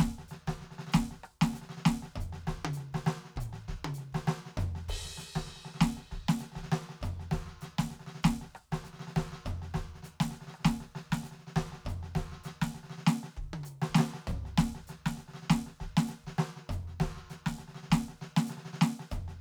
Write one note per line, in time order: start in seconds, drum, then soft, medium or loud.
0.01 kick soft
0.01 snare loud
0.06 kick soft
0.06 cross-stick soft
0.12 kick soft
0.20 snare soft
0.30 snare medium
0.30 hi-hat pedal soft
0.48 kick soft
0.48 snare loud
0.63 snare soft
0.72 snare soft
0.80 snare medium
0.88 snare medium
0.94 kick soft
0.94 snare loud
0.94 hi-hat pedal medium
1.02 kick soft
1.12 snare soft
1.25 cross-stick medium
1.43 kick soft
1.43 snare loud
1.55 snare soft
1.55 hi-hat pedal medium
1.63 snare soft
1.71 snare medium
1.78 snare medium
1.87 kick soft
1.87 snare loud
2.04 snare medium
2.17 kick soft
2.17 floor tom medium
2.22 kick soft
2.22 hi-hat pedal medium
2.28 kick soft
2.34 snare medium
2.48 kick soft
2.48 snare medium
2.57 kick soft
2.66 high tom loud
2.75 hi-hat pedal medium
2.79 snare soft
2.94 kick soft
2.94 snare medium
3.08 snare loud
3.26 snare soft
3.38 kick soft
3.38 mid tom loud
3.42 kick soft
3.42 hi-hat pedal medium
3.46 kick soft
3.54 snare medium
3.69 kick soft
3.69 snare medium
3.79 kick soft
3.86 high tom loud
3.95 hi-hat pedal medium
4.00 snare soft
4.14 kick soft
4.14 snare loud
4.29 snare loud
4.47 snare soft
4.58 kick soft
4.58 floor tom loud
4.58 hi-hat pedal soft
4.65 kick soft
4.67 kick soft
4.77 snare soft
4.90 kick medium
4.90 crash loud
4.97 kick soft
5.06 snare soft
5.19 snare medium
5.19 hi-hat pedal soft
5.37 kick soft
5.37 snare loud
5.48 snare soft
5.57 snare soft
5.66 snare medium
5.76 snare soft
5.82 kick soft
5.82 snare loud
5.82 hi-hat pedal soft
5.88 kick soft
5.98 snare soft
6.13 kick soft
6.13 snare soft
6.22 kick soft
6.30 snare loud
6.40 snare medium
6.40 hi-hat pedal medium
6.53 snare soft
6.57 kick soft
6.57 snare medium
6.65 snare medium
6.73 snare loud
6.90 snare medium
7.03 kick soft
7.03 floor tom loud
7.03 hi-hat pedal soft
7.11 kick soft
7.21 snare soft
7.33 kick soft
7.33 snare loud
7.43 kick soft
7.48 snare soft
7.62 snare medium
7.62 hi-hat pedal medium
7.80 kick soft
7.80 snare loud
7.92 snare soft
8.01 snare soft
8.08 snare medium
8.16 snare medium
8.24 kick soft
8.24 snare loud
8.24 hi-hat pedal soft
8.31 kick soft
8.43 snare soft
8.56 cross-stick medium
8.73 kick soft
8.73 snare loud
8.85 snare soft
8.85 hi-hat pedal soft
8.94 snare soft
9.01 snare medium
9.09 snare medium
9.17 kick soft
9.17 snare loud
9.34 snare medium
9.47 kick soft
9.47 floor tom loud
9.47 hi-hat pedal soft
9.63 snare soft
9.76 kick soft
9.76 snare medium
9.83 kick soft
9.86 kick soft
9.96 snare soft
10.04 snare soft
10.04 hi-hat pedal medium
10.21 kick soft
10.21 snare loud
10.32 snare medium
10.49 snare medium
10.55 cross-stick medium
10.61 snare soft
10.66 kick soft
10.66 snare loud
10.66 hi-hat pedal soft
10.82 snare soft
10.96 snare medium
11.11 kick soft
11.11 snare loud
11.25 snare soft
11.25 hi-hat pedal soft
11.33 snare soft
11.40 snare soft
11.48 snare soft
11.57 kick soft
11.57 snare loud
11.74 snare medium
11.86 kick soft
11.86 floor tom loud
11.86 hi-hat pedal soft
12.04 snare soft
12.17 kick soft
12.17 snare loud
12.26 kick soft
12.33 snare soft
12.45 snare medium
12.45 hi-hat pedal medium
12.62 kick soft
12.62 snare loud
12.76 snare soft
12.85 snare soft
12.91 snare medium
12.99 snare medium
13.08 snare loud
13.08 hi-hat pedal medium
13.24 snare medium
13.38 kick soft
13.38 high tom medium
13.45 kick soft
13.49 kick soft
13.55 high tom loud
13.65 hi-hat pedal medium
13.65 high tom soft
13.83 snare loud
13.90 kick soft
13.96 snare loud
14.00 snare loud
14.15 snare medium
14.29 kick soft
14.29 hi-hat pedal soft
14.29 floor tom loud
14.38 kick soft
14.47 snare soft
14.59 kick soft
14.59 snare loud
14.67 kick soft
14.76 snare soft
14.89 snare medium
14.89 hi-hat pedal medium
15.07 kick soft
15.07 snare loud
15.19 snare soft
15.29 snare soft
15.35 snare medium
15.43 snare soft
15.51 kick soft
15.51 snare loud
15.51 hi-hat pedal soft
15.68 snare soft
15.82 kick soft
15.82 snare medium
15.90 kick soft
15.98 snare loud
16.08 snare medium
16.08 hi-hat pedal medium
16.25 kick soft
16.25 snare medium
16.40 snare loud
16.57 snare soft
16.70 kick soft
16.70 floor tom loud
16.70 hi-hat pedal medium
16.89 snare soft
17.02 kick soft
17.02 snare loud
17.12 kick soft
17.17 snare soft
17.31 snare medium
17.31 hi-hat pedal soft
17.47 kick soft
17.47 snare medium
17.60 snare soft
17.69 snare soft
17.76 snare medium
17.84 snare soft
17.92 kick soft
17.92 snare loud
17.92 hi-hat pedal medium
18.10 snare soft
18.23 snare medium
18.38 snare loud
18.48 snare medium
18.48 hi-hat pedal medium
18.58 snare soft
18.65 snare soft
18.65 snare medium
18.74 snare medium
18.83 snare loud
19.01 snare medium
19.13 kick medium
19.13 floor tom medium
19.13 hi-hat pedal medium
19.23 kick soft
19.29 snare soft